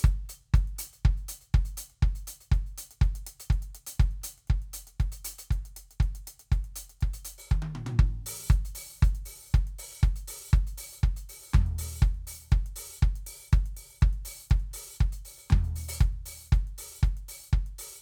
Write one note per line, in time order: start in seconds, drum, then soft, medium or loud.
0.01 kick loud
0.01 hi-hat pedal soft
0.06 closed hi-hat soft
0.17 closed hi-hat soft
0.26 closed hi-hat medium
0.26 kick soft
0.41 closed hi-hat soft
0.55 kick loud
0.55 closed hi-hat medium
0.68 closed hi-hat soft
0.77 closed hi-hat loud
0.77 kick soft
0.94 closed hi-hat soft
1.06 kick loud
1.06 closed hi-hat soft
1.18 closed hi-hat soft
1.29 closed hi-hat loud
1.42 closed hi-hat soft
1.55 kick loud
1.55 closed hi-hat soft
1.66 closed hi-hat soft
1.78 closed hi-hat loud
1.91 closed hi-hat soft
2.03 kick loud
2.03 closed hi-hat soft
2.16 closed hi-hat soft
2.28 closed hi-hat loud
2.41 closed hi-hat soft
2.52 kick loud
2.52 closed hi-hat soft
2.67 closed hi-hat soft
2.79 closed hi-hat loud
2.92 closed hi-hat medium
3.02 kick loud
3.02 closed hi-hat soft
3.16 closed hi-hat medium
3.27 closed hi-hat loud
3.41 closed hi-hat medium
3.51 kick loud
3.51 closed hi-hat soft
3.63 closed hi-hat medium
3.71 kick soft
3.76 closed hi-hat medium
3.88 closed hi-hat loud
4.00 kick loud
4.00 closed hi-hat soft
4.12 closed hi-hat soft
4.22 closed hi-hat loud
4.22 kick soft
4.39 closed hi-hat soft
4.48 kick loud
4.48 closed hi-hat soft
4.63 closed hi-hat soft
4.74 closed hi-hat loud
4.88 closed hi-hat medium
5.01 kick medium
5.01 closed hi-hat soft
5.13 closed hi-hat medium
5.25 closed hi-hat loud
5.39 closed hi-hat medium
5.51 kick medium
5.51 closed hi-hat medium
5.66 closed hi-hat medium
5.77 closed hi-hat loud
5.92 closed hi-hat medium
6.01 kick loud
6.01 closed hi-hat soft
6.16 closed hi-hat medium
6.28 closed hi-hat loud
6.40 closed hi-hat medium
6.53 kick loud
6.53 closed hi-hat soft
6.65 closed hi-hat soft
6.75 closed hi-hat loud
6.75 kick soft
6.90 closed hi-hat medium
7.02 kick medium
7.02 closed hi-hat medium
7.14 closed hi-hat medium
7.26 closed hi-hat loud
7.39 open hi-hat medium
7.49 kick loud
7.49 hi-hat pedal soft
7.49 high tom medium
7.63 high tom loud
7.76 mid tom loud
7.87 mid tom loud
8.00 kick loud
8.20 kick soft
8.27 open hi-hat loud
8.44 open hi-hat soft
8.49 kick loud
8.49 closed hi-hat medium
8.49 hi-hat pedal soft
8.66 closed hi-hat soft
8.76 open hi-hat loud
8.92 open hi-hat soft
9.00 kick loud
9.00 hi-hat pedal soft
9.04 closed hi-hat soft
9.16 closed hi-hat medium
9.26 open hi-hat medium
9.44 open hi-hat soft
9.51 hi-hat pedal soft
9.55 kick loud
9.55 closed hi-hat medium
9.68 closed hi-hat soft
9.79 open hi-hat loud
9.94 open hi-hat soft
10.00 kick loud
10.00 hi-hat pedal soft
10.04 closed hi-hat soft
10.17 closed hi-hat medium
10.28 open hi-hat loud
10.44 open hi-hat soft
10.49 hi-hat pedal soft
10.54 kick loud
10.54 closed hi-hat soft
10.68 closed hi-hat soft
10.78 open hi-hat loud
10.93 open hi-hat medium
10.98 hi-hat pedal soft
11.04 kick loud
11.04 closed hi-hat soft
11.17 closed hi-hat soft
11.30 open hi-hat medium
11.43 open hi-hat medium
11.52 kick loud
11.52 floor tom loud
11.52 hi-hat pedal soft
11.67 closed hi-hat soft
11.79 open hi-hat loud
11.93 open hi-hat soft
11.99 kick loud
11.99 hi-hat pedal soft
12.04 closed hi-hat soft
12.15 closed hi-hat soft
12.28 open hi-hat loud
12.43 open hi-hat soft
12.49 kick loud
12.49 closed hi-hat soft
12.49 hi-hat pedal soft
12.67 closed hi-hat soft
12.77 open hi-hat loud
12.92 open hi-hat soft
12.96 hi-hat pedal soft
13.03 kick loud
13.03 closed hi-hat soft
13.16 closed hi-hat medium
13.27 open hi-hat loud
13.43 hi-hat pedal soft
13.43 open hi-hat medium
13.53 kick loud
13.53 closed hi-hat medium
13.67 closed hi-hat soft
13.78 open hi-hat medium
13.91 open hi-hat soft
13.97 hi-hat pedal soft
14.02 kick loud
14.02 closed hi-hat soft
14.14 closed hi-hat soft
14.22 open hi-hat loud
14.22 kick soft
14.38 open hi-hat soft
14.45 hi-hat pedal soft
14.51 kick loud
14.51 closed hi-hat medium
14.61 closed hi-hat soft
14.72 open hi-hat loud
14.72 kick soft
14.86 open hi-hat soft
14.95 hi-hat pedal soft
15.01 kick loud
15.01 closed hi-hat soft
15.13 closed hi-hat soft
15.26 open hi-hat medium
15.38 open hi-hat medium
15.48 floor tom loud
15.48 hi-hat pedal soft
15.53 kick loud
15.65 closed hi-hat soft
15.73 open hi-hat medium
15.73 kick soft
15.89 open hi-hat loud
15.96 hi-hat pedal soft
16.01 kick loud
16.01 closed hi-hat soft
16.13 closed hi-hat soft
16.26 open hi-hat loud
16.43 hi-hat pedal soft
16.43 open hi-hat soft
16.53 kick loud
16.53 closed hi-hat soft
16.68 closed hi-hat soft
16.79 open hi-hat loud
16.93 open hi-hat soft
16.98 hi-hat pedal soft
17.04 kick loud
17.04 closed hi-hat soft
17.18 closed hi-hat soft
17.29 open hi-hat loud
17.42 open hi-hat soft
17.48 hi-hat pedal soft
17.54 kick loud
17.54 closed hi-hat soft
17.67 closed hi-hat soft
17.79 open hi-hat loud
17.93 hi-hat pedal soft
17.93 open hi-hat soft